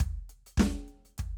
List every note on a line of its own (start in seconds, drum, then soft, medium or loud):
0.00 kick loud
0.00 closed hi-hat medium
0.29 closed hi-hat medium
0.46 closed hi-hat soft
0.58 kick loud
0.58 snare loud
0.88 closed hi-hat soft
1.05 closed hi-hat soft
1.18 kick medium
1.18 closed hi-hat medium